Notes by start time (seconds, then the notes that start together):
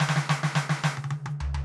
0.03 snare, hi-hat pedal
0.09 snare
0.16 snare
0.29 snare
0.41 snare, hi-hat pedal
0.55 snare
0.69 snare
0.84 snare, hi-hat pedal
0.97 high tom
1.04 high tom
1.11 high tom
1.26 hi-hat pedal, high tom
1.40 floor tom
1.54 floor tom